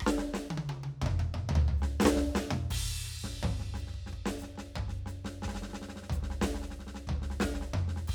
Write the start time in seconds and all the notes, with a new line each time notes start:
0.01 kick, cross-stick
0.07 snare
0.11 kick
0.18 snare
0.34 snare
0.51 high tom
0.55 kick, high tom
0.69 high tom
0.84 high tom
1.02 kick, mid tom
1.06 mid tom
1.20 mid tom
1.34 mid tom
1.49 floor tom
1.56 floor tom
1.68 floor tom
1.78 hi-hat pedal
1.82 snare
2.00 snare
2.04 kick, snare
2.16 snare
2.35 snare
2.51 mid tom
2.71 kick, crash
3.05 cross-stick
3.24 kick, snare
3.43 kick, floor tom
3.60 snare
3.74 snare, hi-hat pedal
3.87 snare
3.94 kick
4.06 snare
4.13 kick
4.26 snare
4.39 snare, hi-hat pedal
4.55 kick, snare
4.76 kick, floor tom
4.88 snare
5.06 snare, hi-hat pedal
5.24 kick, snare
5.42 kick, snare
5.48 snare
5.54 snare
5.55 snare
5.62 snare
5.69 snare
5.74 snare
5.82 snare
5.89 snare
5.96 snare
6.03 snare
6.10 kick, floor tom, hi-hat pedal
6.21 kick, snare
6.30 snare
6.42 kick, snare, hi-hat pedal
6.52 kick, snare
6.62 snare
6.71 snare
6.79 snare
6.87 snare
6.95 snare
7.07 kick, floor tom
7.22 snare
7.30 snare
7.40 kick, snare
7.50 kick, snare
7.61 snare
7.74 mid tom
7.88 snare
7.96 snare
8.08 kick, crash